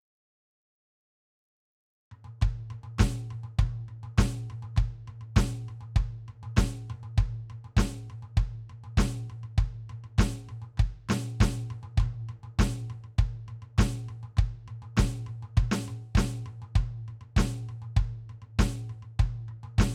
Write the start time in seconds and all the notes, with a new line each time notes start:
2.11 mid tom
2.24 mid tom
2.42 kick, mid tom
2.70 mid tom
2.83 mid tom
2.99 kick, snare, mid tom
3.31 mid tom
3.44 mid tom
3.59 kick, mid tom
3.88 mid tom
4.03 mid tom
4.18 kick, snare, mid tom
4.50 mid tom
4.62 mid tom
4.77 kick, mid tom
5.08 mid tom
5.21 mid tom
5.36 kick, snare, mid tom
5.68 mid tom
5.81 mid tom
5.96 kick, mid tom
6.28 mid tom
6.43 mid tom
6.57 kick, snare, mid tom
6.90 mid tom
7.03 mid tom
7.18 kick, mid tom
7.50 mid tom
7.64 mid tom
7.77 kick, snare, mid tom
8.10 mid tom
8.22 mid tom
8.37 kick, mid tom
8.70 mid tom
8.84 mid tom
8.97 kick, snare, mid tom
9.30 mid tom
9.43 mid tom
9.58 kick, mid tom
9.89 mid tom
10.04 mid tom
10.18 kick, snare, mid tom
10.49 mid tom
10.62 mid tom
10.78 kick, mid tom
11.09 snare, mid tom
11.40 kick, snare, mid tom
11.70 mid tom
11.83 mid tom
11.98 kick, mid tom
12.29 mid tom
12.43 mid tom
12.59 kick, snare, mid tom
12.90 mid tom
13.04 mid tom
13.18 kick, mid tom
13.48 mid tom
13.62 mid tom
13.78 kick, snare, mid tom
14.09 mid tom
14.23 mid tom
14.37 kick, mid tom
14.68 mid tom
14.82 mid tom
14.97 kick, snare, mid tom
15.27 mid tom
15.43 mid tom
15.57 kick, mid tom
15.71 snare
15.88 mid tom
16.15 kick, snare, mid tom
16.46 mid tom
16.62 mid tom
16.75 kick, mid tom
17.08 mid tom
17.21 mid tom
17.37 kick, snare, mid tom
17.69 mid tom
17.82 mid tom
17.97 kick, mid tom
18.29 mid tom
18.42 mid tom
18.59 kick, snare, mid tom
18.89 mid tom
19.03 mid tom
19.19 kick, mid tom
19.48 mid tom
19.63 mid tom
19.78 kick, snare, mid tom